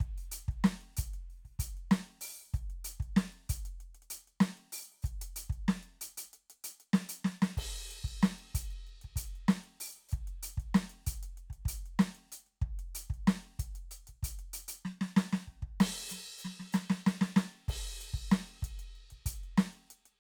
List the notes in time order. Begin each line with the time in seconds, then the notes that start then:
0.01 kick, closed hi-hat
0.19 open hi-hat
0.32 closed hi-hat
0.49 kick, closed hi-hat
0.65 snare
0.81 closed hi-hat
0.98 closed hi-hat, kick
1.14 closed hi-hat
1.31 open hi-hat
1.46 kick, open hi-hat
1.60 closed hi-hat, kick
1.78 closed hi-hat
1.92 snare
2.07 closed hi-hat
2.22 open hi-hat
2.42 open hi-hat
2.54 kick, hi-hat pedal
2.71 closed hi-hat
2.85 closed hi-hat
3.01 kick, closed hi-hat
3.17 snare
3.33 closed hi-hat
3.50 closed hi-hat, kick
3.66 closed hi-hat
3.81 closed hi-hat
3.95 closed hi-hat
4.03 closed hi-hat
4.11 closed hi-hat
4.28 closed hi-hat
4.41 snare
4.58 closed hi-hat
4.73 open hi-hat
4.93 open hi-hat
5.03 kick, closed hi-hat, hi-hat pedal
5.22 closed hi-hat
5.37 closed hi-hat
5.50 kick, closed hi-hat
5.69 snare
5.84 closed hi-hat
6.02 closed hi-hat
6.18 closed hi-hat
6.34 closed hi-hat
6.51 closed hi-hat
6.65 closed hi-hat
6.81 closed hi-hat
6.94 snare
7.10 closed hi-hat
7.25 snare
7.43 snare
7.58 kick, crash
7.76 closed hi-hat
7.92 closed hi-hat
8.05 kick, closed hi-hat
8.24 snare
8.39 closed hi-hat
8.55 closed hi-hat, kick
8.71 closed hi-hat
8.88 closed hi-hat
9.02 kick, closed hi-hat
9.17 closed hi-hat, kick
9.36 closed hi-hat
9.49 snare
9.64 closed hi-hat
9.81 open hi-hat
9.97 open hi-hat
10.09 kick, closed hi-hat, hi-hat pedal
10.28 closed hi-hat
10.44 closed hi-hat
10.58 kick, closed hi-hat
10.75 snare
10.90 closed hi-hat
11.07 closed hi-hat, kick
11.24 closed hi-hat
11.38 closed hi-hat
11.51 kick, closed hi-hat
11.66 closed hi-hat, kick
11.87 closed hi-hat
12.00 snare
12.16 closed hi-hat
12.33 closed hi-hat
12.47 closed hi-hat
12.62 kick
12.80 open hi-hat
12.96 closed hi-hat
13.11 kick
13.15 closed hi-hat
13.28 snare
13.43 closed hi-hat
13.60 kick, closed hi-hat
13.76 open hi-hat
13.92 closed hi-hat
14.08 kick, closed hi-hat
14.23 closed hi-hat, kick
14.40 closed hi-hat
14.54 closed hi-hat
14.69 closed hi-hat
14.86 snare
15.02 snare
15.17 snare
15.33 snare
15.48 kick
15.63 kick
15.81 snare, crash
16.10 snare, hi-hat pedal
16.39 hi-hat pedal
16.45 snare
16.60 snare
16.73 snare, hi-hat pedal
16.91 snare
17.07 snare
17.22 snare
17.28 hi-hat pedal
17.37 snare
17.69 kick, crash
17.84 closed hi-hat
18.02 closed hi-hat
18.14 kick, closed hi-hat
18.32 snare
18.48 closed hi-hat
18.63 kick, closed hi-hat
18.80 closed hi-hat
18.96 closed hi-hat
19.11 kick, closed hi-hat
19.26 closed hi-hat, kick
19.44 closed hi-hat
19.58 snare
19.74 closed hi-hat
19.91 closed hi-hat
20.06 closed hi-hat